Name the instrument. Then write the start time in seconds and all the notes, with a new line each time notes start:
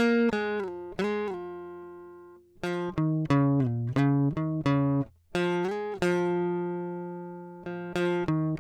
acoustic guitar
0.00 A#3
0.35 G#3
0.61 F3
1.00 G#3
1.30 F3
2.65 F3
2.99 D#3
3.32 C#3
3.62 A#2
3.98 C#3
4.38 D#3
4.67 C#3
5.36 F3
5.66 G#3
6.03 F3
7.68 F3
7.97 F3
8.30 D#3